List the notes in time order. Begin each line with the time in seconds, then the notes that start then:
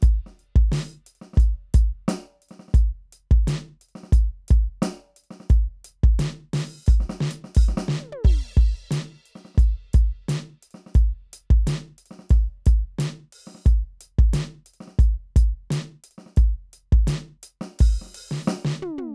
0.01 closed hi-hat, kick, snare
0.26 snare
0.39 closed hi-hat
0.56 kick
0.72 open hi-hat, snare
0.88 hi-hat pedal
1.06 closed hi-hat
1.15 closed hi-hat
1.21 snare
1.33 kick, snare
1.40 closed hi-hat
1.74 kick, closed hi-hat
2.08 closed hi-hat, snare
2.23 hi-hat pedal
2.42 closed hi-hat
2.48 snare, closed hi-hat
2.59 snare
2.68 snare
2.74 closed hi-hat, kick
3.12 closed hi-hat
3.31 kick
3.47 closed hi-hat, snare
3.81 closed hi-hat
3.88 closed hi-hat
3.95 snare
4.03 snare
4.12 closed hi-hat, kick, snare
4.48 closed hi-hat, kick
4.82 closed hi-hat, snare
5.03 hi-hat pedal
5.16 closed hi-hat
5.24 closed hi-hat
5.31 snare
5.40 snare
5.50 closed hi-hat, kick
5.84 closed hi-hat
6.03 kick
6.19 open hi-hat, snare
6.53 open hi-hat, snare
6.86 open hi-hat, kick
6.90 hi-hat pedal
7.00 snare
7.09 snare
7.20 snare
7.31 closed hi-hat
7.44 snare
7.55 open hi-hat, kick
7.64 snare, hi-hat pedal
7.77 snare
7.88 snare, hi-hat pedal
8.00 high tom
8.12 high tom
8.24 kick, crash
8.57 kick
8.91 open hi-hat, snare
9.25 closed hi-hat
9.35 snare, closed hi-hat
9.45 snare
9.55 kick, snare
9.59 closed hi-hat
9.93 closed hi-hat, kick
10.28 closed hi-hat, snare
10.42 hi-hat pedal
10.62 closed hi-hat
10.71 snare, closed hi-hat
10.86 snare
10.94 open hi-hat, kick
11.33 closed hi-hat
11.50 kick
11.67 closed hi-hat, snare
11.98 closed hi-hat
12.06 closed hi-hat
12.11 snare
12.19 snare
12.29 closed hi-hat, kick, snare
12.66 closed hi-hat, kick
12.99 closed hi-hat, snare
13.32 open hi-hat
13.40 open hi-hat
13.47 snare
13.55 snare
13.65 closed hi-hat, kick, snare, hi-hat pedal
14.01 closed hi-hat
14.18 kick
14.33 closed hi-hat, snare
14.66 closed hi-hat
14.73 closed hi-hat
14.80 snare
14.87 snare
14.99 closed hi-hat, kick
15.36 closed hi-hat, kick
15.70 closed hi-hat, snare
16.04 closed hi-hat
16.11 closed hi-hat
16.18 snare
16.26 snare
16.36 closed hi-hat, kick
16.73 closed hi-hat
16.92 kick
17.07 closed hi-hat, snare
17.43 closed hi-hat
17.61 snare
17.79 open hi-hat, kick
18.01 snare
18.06 snare
18.14 open hi-hat
18.31 snare
18.47 snare
18.65 snare
18.82 floor tom
18.97 floor tom